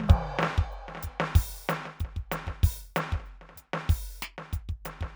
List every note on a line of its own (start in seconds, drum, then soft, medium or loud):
0.01 snare soft
0.04 kick soft
0.04 snare soft
0.09 kick loud
0.09 hi-hat pedal medium
0.09 crash loud
0.39 snare loud
0.39 hi-hat pedal medium
0.43 snare loud
0.58 kick medium
0.64 snare soft
0.72 closed hi-hat soft
0.89 snare soft
0.95 snare medium
0.98 snare soft
1.03 closed hi-hat loud
1.03 kick soft
1.20 snare loud
1.36 open hi-hat loud
1.36 kick loud
1.68 closed hi-hat loud
1.68 snare loud
1.68 hi-hat pedal soft
1.86 snare medium
2.00 closed hi-hat medium
2.00 kick medium
2.05 snare soft
2.17 kick medium
2.17 closed hi-hat soft
2.32 closed hi-hat loud
2.32 snare loud
2.47 kick medium
2.47 snare soft
2.64 open hi-hat loud
2.64 kick loud
2.95 closed hi-hat loud
2.95 snare loud
2.95 hi-hat pedal soft
3.13 kick medium
3.13 snare soft
3.20 snare soft
3.26 closed hi-hat soft
3.42 snare soft
3.49 snare soft
3.56 closed hi-hat medium
3.56 kick soft
3.74 snare loud
3.90 open hi-hat loud
3.90 kick loud
4.05 open hi-hat soft
4.21 closed hi-hat loud
4.21 snare loud
4.21 hi-hat pedal medium
4.38 snare medium
4.53 closed hi-hat loud
4.53 kick medium
4.69 kick medium
4.69 closed hi-hat soft
4.86 closed hi-hat loud
4.86 snare medium
5.01 kick medium
5.01 snare medium